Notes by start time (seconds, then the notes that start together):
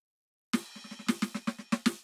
0.54 snare, ride
0.76 snare
0.85 snare
0.92 snare
1.00 snare
1.07 snare
1.09 snare
1.23 snare
1.35 snare
1.48 snare
1.59 snare
1.73 snare
1.86 snare